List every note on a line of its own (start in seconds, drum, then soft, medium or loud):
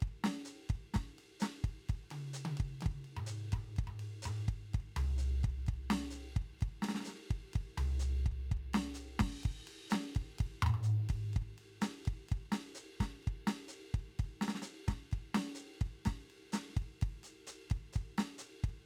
0.01 kick soft
0.01 ride soft
0.07 kick soft
0.24 snare medium
0.24 ride medium
0.45 hi-hat pedal medium
0.45 ride soft
0.70 kick soft
0.70 ride soft
0.75 kick soft
0.94 kick soft
0.94 snare medium
0.94 ride medium
1.01 kick soft
1.19 ride soft
1.40 snare medium
1.40 hi-hat pedal medium
1.40 ride medium
1.64 kick soft
1.64 ride soft
1.69 kick soft
1.89 kick soft
1.89 ride soft
1.95 kick soft
2.11 high tom medium
2.11 ride medium
2.34 hi-hat pedal medium
2.34 ride soft
2.45 high tom medium
2.58 kick soft
2.58 ride soft
2.81 high tom medium
2.81 ride medium
2.86 kick soft
2.91 kick soft
3.05 ride soft
3.17 mid tom medium
3.27 hi-hat pedal medium
3.27 ride soft
3.53 kick soft
3.53 mid tom medium
3.53 ride medium
3.77 kick soft
3.77 ride soft
3.84 kick soft
3.84 mid tom medium
4.00 ride medium
4.23 hi-hat pedal medium
4.23 mid tom medium
4.23 ride medium
4.49 kick soft
4.49 ride soft
4.74 kick soft
4.74 ride soft
4.80 kick soft
4.97 floor tom loud
4.97 ride medium
5.18 hi-hat pedal medium
5.18 ride soft
5.44 kick soft
5.44 ride soft
5.50 kick soft
5.67 kick soft
5.67 ride soft
5.74 kick soft
5.91 snare loud
5.91 ride medium
6.11 snare soft
6.11 hi-hat pedal medium
6.11 ride soft
6.37 kick soft
6.37 ride soft
6.42 kick soft
6.59 kick soft
6.59 hi-hat pedal soft
6.59 ride soft
6.68 kick soft
6.83 snare medium
6.83 ride medium
6.89 snare medium
6.95 snare soft
7.01 snare soft
7.05 snare soft
7.05 hi-hat pedal medium
7.05 ride soft
7.14 snare soft
7.20 snare soft
7.25 snare soft
7.30 kick soft
7.30 snare soft
7.30 ride soft
7.35 snare soft
7.43 snare soft
7.46 snare soft
7.54 kick soft
7.54 ride medium
7.61 kick soft
7.78 floor tom loud
7.78 ride medium
8.00 hi-hat pedal medium
8.26 kick soft
8.31 kick soft
8.52 kick soft
8.57 kick soft
8.74 snare medium
8.74 ride medium
8.94 hi-hat pedal medium
8.94 ride soft
9.20 kick soft
9.20 snare medium
9.20 crash medium
9.27 kick soft
9.44 kick soft
9.44 ride medium
9.51 kick soft
9.68 ride medium
9.90 snare medium
9.90 hi-hat pedal medium
9.90 ride medium
10.15 kick soft
10.15 ride medium
10.22 kick soft
10.39 kick soft
10.39 ride medium
10.46 kick soft
10.63 mid tom loud
10.67 mid tom loud
10.74 mid tom medium
10.83 hi-hat pedal medium
11.09 kick soft
11.09 ride medium
11.15 kick soft
11.34 kick soft
11.34 ride soft
11.42 kick soft
11.58 ride soft
11.82 snare medium
11.82 hi-hat pedal medium
11.82 ride medium
12.06 kick soft
12.06 ride soft
12.13 kick soft
12.29 kick soft
12.29 ride soft
12.37 kick soft
12.52 snare medium
12.52 ride medium
12.75 hi-hat pedal medium
12.75 ride soft
13.01 kick soft
13.01 snare medium
13.01 ride medium
13.23 ride soft
13.27 kick soft
13.48 snare medium
13.48 ride medium
13.69 hi-hat pedal medium
13.69 ride soft
13.94 kick soft
13.94 ride soft
14.00 kick soft
14.09 snare soft
14.13 snare soft
14.19 kick soft
14.19 ride soft
14.25 kick soft
14.42 snare medium
14.42 ride medium
14.48 snare medium
14.55 snare soft
14.62 snare soft
14.62 hi-hat pedal medium
14.72 snare soft
14.88 kick soft
14.88 snare soft
14.88 ride medium
14.94 kick soft
15.12 kick soft
15.12 ride soft
15.18 kick soft
15.35 snare medium
15.35 ride medium
15.55 hi-hat pedal medium
15.55 ride soft
15.61 snare soft
15.81 kick soft
15.81 ride soft
15.87 kick soft
16.06 kick soft
16.06 snare medium
16.06 ride medium
16.13 kick soft
16.30 ride soft
16.53 snare medium
16.53 hi-hat pedal medium
16.53 ride medium
16.70 snare soft
16.77 kick soft
16.77 ride soft
16.82 kick soft
16.88 snare soft
17.02 kick soft
17.02 ride medium
17.24 closed hi-hat medium
17.24 ride soft
17.47 hi-hat pedal medium
17.47 ride soft
17.70 kick soft
17.70 ride soft
17.77 kick soft
17.93 kick soft
17.93 hi-hat pedal medium
17.93 ride soft
18.01 kick soft
18.18 snare medium
18.18 ride medium
18.39 hi-hat pedal medium
18.39 ride soft
18.64 kick soft
18.64 ride soft
18.69 kick soft